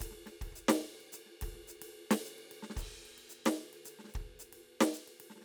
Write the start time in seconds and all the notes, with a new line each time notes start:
0.01 kick, hi-hat pedal, ride
0.11 snare
0.26 snare, ride
0.42 kick, ride
0.53 kick, hi-hat pedal
0.69 snare, ride
1.01 ride
1.13 hi-hat pedal, ride
1.26 snare
1.42 kick, ride
1.55 snare
1.68 hi-hat pedal, ride
1.82 ride
2.11 snare, ride
2.25 hi-hat pedal
2.39 ride
2.52 ride
2.63 snare
2.70 snare
2.75 kick, snare, hi-hat pedal, crash
3.06 ride
3.18 ride
3.30 hi-hat pedal
3.46 snare, ride
3.74 ride
3.85 hi-hat pedal, ride
3.99 snare
4.05 snare
4.09 snare, hi-hat pedal
4.15 kick, ride
4.40 hi-hat pedal, ride
4.53 ride
4.81 snare, ride
4.94 snare, hi-hat pedal
5.01 snare
5.08 ride
5.18 hi-hat pedal, ride
5.30 snare
5.36 snare
5.41 snare